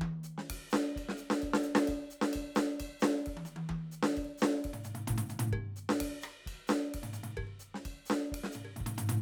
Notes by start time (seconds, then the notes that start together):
0.01 kick, high tom
0.24 hi-hat pedal
0.38 snare
0.50 kick, ride
0.70 snare, hi-hat pedal
0.97 kick, ride bell
1.04 kick
1.09 snare
1.17 hi-hat pedal, ride
1.30 snare
1.42 kick, ride bell
1.54 snare
1.63 hi-hat pedal, ride
1.75 snare
1.88 kick, ride bell
2.11 hi-hat pedal
2.22 snare
2.33 kick, ride bell
2.55 snare, hi-hat pedal
2.80 kick, ride bell
3.00 snare, hi-hat pedal
3.26 kick, ride
3.37 high tom
3.45 hi-hat pedal, high tom
3.57 high tom
3.69 kick, high tom
3.92 hi-hat pedal
4.03 snare
4.17 kick, ride bell
4.25 ride
4.38 hi-hat pedal
4.42 snare
4.65 kick, ride
4.74 mid tom
4.84 hi-hat pedal, mid tom
4.95 mid tom
5.08 kick, mid tom
5.18 mid tom
5.29 hi-hat pedal, mid tom
5.40 mid tom
5.53 kick, percussion
5.76 hi-hat pedal
5.90 snare
6.01 kick, ride
6.22 cross-stick, hi-hat pedal
6.47 kick, ride bell
6.68 snare, hi-hat pedal
6.94 kick, ride
7.03 mid tom
7.14 hi-hat pedal, mid tom
7.24 mid tom
7.37 kick, percussion
7.44 kick
7.60 hi-hat pedal
7.75 snare
7.86 kick, ride bell
8.06 hi-hat pedal
8.10 snare
8.32 kick, ride
8.44 snare
8.52 hi-hat pedal, mid tom
8.65 percussion
8.77 mid tom
8.81 kick
8.98 hi-hat pedal, mid tom
9.09 mid tom